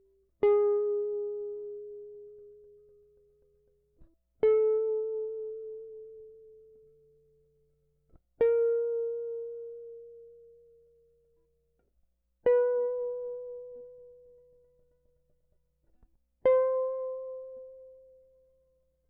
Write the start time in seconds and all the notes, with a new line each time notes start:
0.44 G#4
4.44 A4
8.42 A#4
12.47 B4
16.47 C5